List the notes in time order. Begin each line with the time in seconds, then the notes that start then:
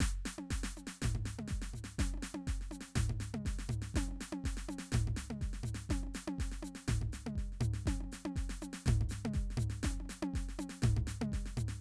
0.01 kick, snare
0.25 snare, hi-hat pedal
0.38 high tom
0.50 kick, snare
0.63 snare
0.76 hi-hat pedal, high tom
0.87 snare
1.02 kick, snare, floor tom
1.15 floor tom
1.25 snare, hi-hat pedal
1.39 mid tom
1.48 kick, snare
1.62 snare
1.73 floor tom, hi-hat pedal
1.84 snare
1.98 kick, snare, high tom
2.14 high tom
2.17 high tom
2.22 snare, hi-hat pedal
2.34 high tom
2.47 kick, snare
2.61 snare
2.71 hi-hat pedal, high tom
2.81 snare
2.95 kick, snare, floor tom
3.09 floor tom
3.20 snare, hi-hat pedal
3.34 mid tom
3.45 kick, snare
3.59 snare
3.69 floor tom, hi-hat pedal
3.82 snare
3.94 kick, snare, high tom
4.08 high tom
4.11 high tom
4.16 high tom
4.20 snare, hi-hat pedal
4.32 high tom
4.44 kick, snare
4.57 snare
4.69 hi-hat pedal, high tom
4.78 snare
4.92 kick, snare, floor tom
5.07 floor tom
5.16 snare, hi-hat pedal
5.30 mid tom
5.41 kick, snare
5.53 snare
5.63 floor tom, hi-hat pedal
5.74 snare
5.89 kick, snare, high tom
6.03 high tom
6.07 high tom
6.14 snare, hi-hat pedal
6.27 high tom
6.38 kick, snare
6.51 snare
6.62 hi-hat pedal, high tom
6.75 snare
6.88 kick, snare, floor tom
7.01 floor tom
7.12 snare, hi-hat pedal
7.26 mid tom
7.35 kick, snare
7.52 snare
7.61 floor tom, hi-hat pedal
7.73 snare
7.86 kick, snare, high tom
8.00 high tom
8.04 high tom
8.12 snare, hi-hat pedal
8.25 high tom
8.36 kick, snare
8.49 snare
8.61 hi-hat pedal, high tom
8.73 snare
8.86 kick, snare, floor tom
9.01 floor tom
9.09 snare, hi-hat pedal
9.25 mid tom
9.34 kick, snare
9.50 snare
9.57 floor tom, hi-hat pedal
9.70 snare
9.82 kick, snare, hi-hat pedal, high tom
9.91 high tom
10.00 high tom
10.05 snare, high tom
10.09 hi-hat pedal
10.22 high tom
10.34 kick, snare
10.49 snare
10.59 hi-hat pedal, high tom
10.69 snare
10.82 kick, snare, floor tom
10.96 floor tom
11.07 snare, hi-hat pedal
11.21 mid tom
11.32 kick, snare
11.46 snare
11.57 floor tom, hi-hat pedal
11.68 snare